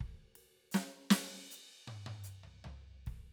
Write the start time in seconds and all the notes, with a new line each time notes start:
0.01 kick
0.36 ride
0.72 snare, hi-hat pedal
1.11 snare, ride
1.51 hi-hat pedal
1.88 mid tom
2.07 mid tom
2.24 floor tom, hi-hat pedal
2.44 floor tom
2.65 floor tom
3.07 kick, crash